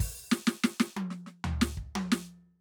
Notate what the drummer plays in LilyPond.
\new DrumStaff \drummode { \time 4/4 \tempo 4 = 92 <bd hho>8 sn16 sn16 sn16 sn16 tommh16 sn16 sn16 tomfh16 sn16 bd16 tommh16 sn8. | }